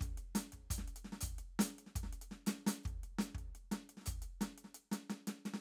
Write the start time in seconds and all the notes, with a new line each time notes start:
0.01 kick, closed hi-hat
0.18 closed hi-hat
0.35 closed hi-hat, snare
0.52 kick, closed hi-hat
0.71 closed hi-hat, kick
0.78 snare
0.88 closed hi-hat
0.96 closed hi-hat
1.05 snare
1.12 snare
1.21 closed hi-hat, kick
1.39 closed hi-hat
1.59 closed hi-hat, snare
1.79 closed hi-hat
1.87 snare
1.96 kick, closed hi-hat
2.03 snare
2.13 closed hi-hat
2.22 closed hi-hat
2.31 snare
2.47 closed hi-hat, snare
2.67 open hi-hat, snare
2.84 kick, hi-hat pedal
2.88 closed hi-hat
3.04 closed hi-hat
3.19 closed hi-hat, snare
3.35 kick, closed hi-hat
3.55 closed hi-hat
3.72 snare, closed hi-hat
3.89 closed hi-hat
3.97 snare
4.01 snare
4.06 closed hi-hat, kick
4.22 closed hi-hat
4.41 snare, closed hi-hat
4.58 closed hi-hat
4.64 snare
4.75 closed hi-hat
4.92 snare, closed hi-hat
5.10 snare, closed hi-hat
5.27 snare, closed hi-hat
5.46 snare, closed hi-hat
5.54 snare